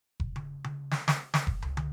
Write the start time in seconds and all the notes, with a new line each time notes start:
0.20 kick
0.36 high tom
0.65 high tom
0.92 snare
1.08 snare
1.34 snare
1.47 kick
1.63 floor tom
1.77 high tom